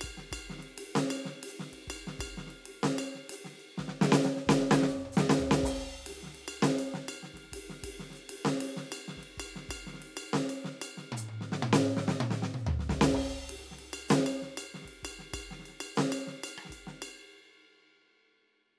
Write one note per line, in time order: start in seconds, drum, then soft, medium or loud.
0.01 kick soft
0.01 ride bell loud
0.17 snare soft
0.32 kick soft
0.32 ride bell loud
0.50 snare soft
0.58 snare soft
0.63 ride medium
0.78 ride loud
0.95 snare loud
0.95 hi-hat pedal loud
1.10 ride bell loud
1.25 snare medium
1.43 ride loud
1.48 hi-hat pedal medium
1.59 snare medium
1.72 kick soft
1.72 ride medium
1.87 kick soft
1.87 hi-hat pedal soft
1.87 ride bell loud
2.07 snare medium
2.19 kick soft
2.19 ride bell loud
2.37 snare soft
2.46 snare soft
2.46 ride medium
2.66 ride loud
2.83 snare loud
2.83 hi-hat pedal medium
2.98 ride bell loud
3.15 snare soft
3.29 hi-hat pedal medium
3.29 ride loud
3.45 snare soft
3.53 snare soft
3.59 ride bell soft
3.78 kick soft
3.78 snare medium
3.88 snare medium
4.01 snare loud
4.12 snare loud
4.23 snare medium
4.23 hi-hat pedal medium
4.36 snare soft
4.47 kick soft
4.47 snare loud
4.61 snare soft
4.71 kick soft
4.71 snare loud
4.82 snare medium
4.88 kick soft
4.88 hi-hat pedal medium
4.95 mid tom soft
5.05 high tom soft
5.12 hi-hat pedal medium
5.17 snare loud
5.29 snare loud
5.38 floor tom medium
5.38 hi-hat pedal medium
5.51 snare loud
5.63 kick medium
5.63 hi-hat pedal loud
5.63 crash medium
5.70 kick soft
5.76 kick soft
5.90 cross-stick soft
6.06 snare soft
6.06 ride loud
6.23 snare soft
6.26 snare soft
6.35 ride medium
6.48 ride bell loud
6.62 snare loud
6.79 ride bell medium
6.94 snare medium
7.08 ride bell loud
7.13 hi-hat pedal soft
7.23 snare soft
7.33 kick soft
7.33 snare soft
7.33 ride medium
7.43 snare soft
7.52 kick soft
7.52 hi-hat pedal soft
7.52 ride loud
7.70 snare soft
7.83 kick soft
7.83 ride loud
7.99 snare soft
8.10 snare soft
8.10 ride soft
8.15 hi-hat pedal medium
8.29 ride loud
8.45 snare loud
8.61 ride loud
8.76 snare medium
8.92 hi-hat pedal medium
8.92 ride bell loud
9.08 snare soft
9.16 kick soft
9.16 snare soft
9.23 ride medium
9.37 kick soft
9.37 hi-hat pedal soft
9.37 ride bell loud
9.56 snare soft
9.69 kick soft
9.69 ride bell loud
9.87 snare soft
9.93 snare soft
9.99 snare soft
9.99 ride medium
10.05 snare soft
10.17 ride bell loud
10.27 hi-hat pedal soft
10.33 snare medium
10.49 ride bell medium
10.64 snare medium
10.82 hi-hat pedal medium
10.82 ride bell loud
10.97 snare soft
11.12 high tom loud
11.17 hi-hat pedal loud
11.29 high tom medium
11.41 snare medium
11.52 snare medium
11.62 high tom loud
11.73 snare loud
11.84 high tom medium
11.97 snare medium
12.08 snare loud
12.20 high tom loud
12.31 snare medium
12.42 snare medium
12.54 hi-hat pedal soft
12.54 open hi-hat soft
12.54 high tom loud
12.67 floor tom loud
12.79 snare soft
12.84 hi-hat pedal soft
12.89 kick soft
12.89 snare medium
13.01 snare loud
13.09 hi-hat pedal medium
13.14 kick soft
13.14 crash medium
13.20 kick soft
13.34 cross-stick soft
13.41 cross-stick soft
13.45 snare soft
13.49 ride loud
13.71 snare soft
13.79 ride medium
13.93 ride bell loud
14.08 snare loud
14.08 hi-hat pedal loud
14.18 snare soft
14.26 ride bell loud
14.42 snare soft
14.57 hi-hat pedal medium
14.57 ride bell loud
14.74 snare soft
14.82 kick soft
14.82 snare soft
14.88 ride medium
15.03 kick soft
15.03 hi-hat pedal soft
15.03 ride bell loud
15.19 snare soft
15.33 kick soft
15.33 ride bell loud
15.51 snare soft
15.59 snare soft
15.66 snare soft
15.66 ride bell medium
15.80 ride bell loud
15.95 snare loud
15.95 hi-hat pedal medium
16.12 ride bell loud
16.27 snare soft
16.44 hi-hat pedal medium
16.44 ride bell loud
16.58 cross-stick medium
16.65 snare soft
16.70 kick soft
16.70 ride bell medium
16.87 snare soft
17.02 ride bell loud